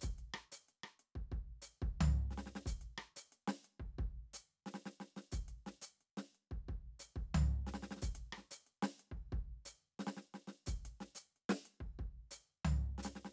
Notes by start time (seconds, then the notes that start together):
0.01 kick, hi-hat pedal
0.18 closed hi-hat
0.34 cross-stick
0.52 hi-hat pedal
0.68 closed hi-hat
0.83 cross-stick
0.99 closed hi-hat
1.15 kick
1.32 kick
1.62 hi-hat pedal
1.82 kick
2.01 floor tom
2.31 snare
2.38 snare
2.46 snare
2.55 snare
2.66 kick, hi-hat pedal
2.81 closed hi-hat
2.98 cross-stick
3.16 hi-hat pedal
3.32 closed hi-hat
3.48 snare
3.64 closed hi-hat
3.80 kick
3.98 kick
4.33 hi-hat pedal
4.66 snare
4.74 snare
4.86 snare
5.00 snare
5.16 snare
5.32 kick, hi-hat pedal
5.48 closed hi-hat
5.66 snare
5.82 hi-hat pedal
6.01 open hi-hat
6.17 snare
6.35 closed hi-hat
6.51 kick
6.68 kick
6.99 hi-hat pedal
7.16 kick
7.34 floor tom
7.67 snare
7.74 snare
7.83 snare
7.91 snare
7.97 snare
8.02 kick, hi-hat pedal
8.15 closed hi-hat
8.33 cross-stick
8.38 snare
8.51 hi-hat pedal
8.67 closed hi-hat
8.83 snare
8.99 closed hi-hat
9.11 kick
9.32 kick
9.65 hi-hat pedal
9.99 snare
10.07 snare
10.17 snare
10.34 snare
10.47 snare
10.66 kick, hi-hat pedal
10.85 open hi-hat
11.00 snare
11.15 hi-hat pedal
11.36 closed hi-hat
11.49 snare
11.65 closed hi-hat
11.80 kick
11.99 kick
12.31 hi-hat pedal
12.65 floor tom
12.98 snare
13.03 snare, hi-hat pedal
13.15 snare
13.25 snare